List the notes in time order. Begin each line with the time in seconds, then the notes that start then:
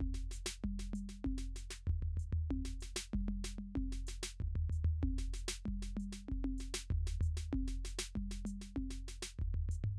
0.01 kick, high tom
0.08 kick
0.15 snare
0.32 snare, hi-hat pedal
0.47 snare
0.64 kick, mid tom
0.80 snare
0.94 hi-hat pedal, mid tom
1.10 snare
1.25 kick, high tom
1.33 kick
1.39 snare
1.57 snare, hi-hat pedal
1.71 snare
1.88 kick, floor tom
1.96 kick
2.03 floor tom
2.18 floor tom, hi-hat pedal
2.33 floor tom
2.51 kick, high tom
2.57 kick
2.66 snare
2.81 snare, hi-hat pedal
2.97 snare
3.14 kick, mid tom
3.21 kick
3.29 mid tom
3.45 snare, hi-hat pedal
3.59 mid tom
3.76 kick, high tom
3.83 kick
3.93 snare
4.08 snare, hi-hat pedal
4.24 snare
4.41 kick, floor tom
4.48 kick
4.56 floor tom
4.70 floor tom, hi-hat pedal
4.85 floor tom
5.04 kick, high tom
5.11 kick
5.19 snare
5.34 snare, hi-hat pedal
5.49 snare
5.66 kick, mid tom
5.74 kick
5.83 snare
5.97 hi-hat pedal, mid tom
6.13 snare
6.29 kick, high tom
6.45 high tom
6.59 snare, hi-hat pedal
6.75 snare
6.91 kick, floor tom
6.98 kick
7.02 kick
7.08 snare
7.21 floor tom, hi-hat pedal
7.38 snare
7.53 kick, high tom
7.61 kick
7.64 kick, snare
7.85 snare, hi-hat pedal
7.99 snare
8.16 kick, mid tom
8.23 kick
8.32 snare
8.46 hi-hat pedal, mid tom
8.62 snare
8.77 kick, high tom
8.84 kick
8.91 snare
9.09 snare, hi-hat pedal
9.23 snare
9.39 kick, floor tom
9.48 kick
9.55 floor tom
9.70 floor tom, hi-hat pedal
9.85 floor tom